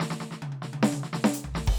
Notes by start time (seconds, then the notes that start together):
0.01 snare
0.10 snare
0.20 snare
0.31 snare
0.42 high tom
0.52 high tom
0.62 snare
0.73 high tom
0.83 snare
0.92 high tom
1.03 snare
1.13 snare
1.24 snare
1.33 closed hi-hat
1.44 floor tom
1.54 kick, snare
1.66 kick, crash